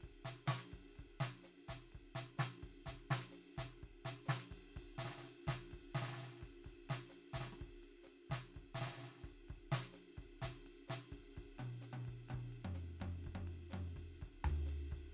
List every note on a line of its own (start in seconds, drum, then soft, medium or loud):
0.01 kick soft
0.01 ride soft
0.25 snare medium
0.25 ride medium
0.46 snare medium
0.46 hi-hat pedal medium
0.46 ride medium
0.72 kick soft
0.72 ride soft
0.87 snare soft
0.91 snare soft
0.96 kick soft
0.96 ride soft
1.20 snare medium
1.20 ride medium
1.44 hi-hat pedal medium
1.44 ride soft
1.69 kick soft
1.69 snare soft
1.69 ride soft
1.92 kick soft
1.92 ride soft
2.15 snare medium
2.15 ride soft
2.38 snare medium
2.38 hi-hat pedal medium
2.38 ride medium
2.63 kick soft
2.63 ride soft
2.86 kick soft
2.86 snare soft
2.86 ride soft
2.93 kick soft
3.11 snare medium
3.11 ride medium
3.32 hi-hat pedal medium
3.32 ride soft
3.57 kick soft
3.57 snare medium
3.57 ride soft
3.82 kick soft
3.82 ride soft
4.05 snare medium
4.05 ride medium
4.26 snare medium
4.26 hi-hat pedal medium
4.26 ride medium
4.51 kick soft
4.51 ride medium
4.76 kick soft
4.76 ride medium
4.82 kick soft
4.98 snare medium
4.98 ride medium
5.05 snare soft
5.11 snare soft
5.18 snare soft
5.18 hi-hat pedal medium
5.24 snare soft
5.24 ride soft
5.47 kick soft
5.47 snare medium
5.47 ride medium
5.52 kick soft
5.72 kick soft
5.72 ride soft
5.78 kick soft
5.95 snare medium
5.95 ride medium
6.02 snare medium
6.08 snare soft
6.12 snare soft
6.12 hi-hat pedal soft
6.17 snare soft
6.17 ride soft
6.23 snare soft
6.28 snare soft
6.32 snare soft
6.36 snare soft
6.39 snare soft
6.39 ride soft
6.42 kick soft
6.42 snare soft
6.50 snare soft
6.53 snare soft
6.55 snare soft
6.58 snare soft
6.65 kick soft
6.65 ride soft
6.89 snare medium
6.89 ride medium
7.10 hi-hat pedal medium
7.10 ride soft
7.34 kick soft
7.34 snare medium
7.34 ride medium
7.41 snare soft
7.47 cross-stick soft
7.53 cross-stick soft
7.58 kick soft
7.58 snare soft
7.58 ride soft
7.63 kick soft
7.63 snare soft
7.68 snare soft
7.83 ride soft
8.04 hi-hat pedal medium
8.04 ride soft
8.30 kick soft
8.30 snare medium
8.30 ride soft
8.55 kick soft
8.55 ride soft
8.61 kick soft
8.75 snare medium
8.75 ride medium
8.81 snare medium
8.87 snare soft
8.92 snare soft
8.98 snare soft
8.98 hi-hat pedal soft
9.02 snare soft
9.02 ride soft
9.09 snare soft
9.13 snare soft
9.18 snare soft
9.21 kick soft
9.21 snare soft
9.25 snare soft
9.25 ride soft
9.29 kick soft
9.29 snare soft
9.34 snare soft
9.49 kick soft
9.49 ride soft
9.55 kick soft
9.72 snare medium
9.72 ride medium
9.93 hi-hat pedal medium
9.93 ride soft
10.17 kick soft
10.17 ride soft
10.23 kick soft
10.42 kick soft
10.42 snare medium
10.42 ride medium
10.49 kick soft
10.67 ride soft
10.88 snare medium
10.88 hi-hat pedal medium
10.88 ride medium
11.12 kick soft
11.12 ride soft
11.17 kick soft
11.37 kick soft
11.37 ride soft
11.43 kick soft
11.59 high tom medium
11.59 ride medium
11.82 hi-hat pedal medium
11.82 ride soft
11.93 high tom medium
12.05 kick soft
12.05 ride soft
12.29 high tom medium
12.29 ride medium
12.34 kick soft
12.39 kick soft
12.53 ride soft
12.65 mid tom medium
12.75 hi-hat pedal medium
12.75 ride soft
13.00 kick soft
13.00 mid tom medium
13.00 ride medium
13.25 kick soft
13.25 ride soft
13.32 kick soft
13.32 mid tom medium
13.48 ride medium
13.70 hi-hat pedal medium
13.70 mid tom medium
13.70 ride medium
13.96 kick soft
13.96 ride soft
14.22 kick soft
14.22 ride soft
14.28 kick soft
14.45 floor tom loud
14.45 ride medium
14.66 hi-hat pedal medium
14.66 ride soft
14.92 kick soft
14.92 ride soft
14.98 kick soft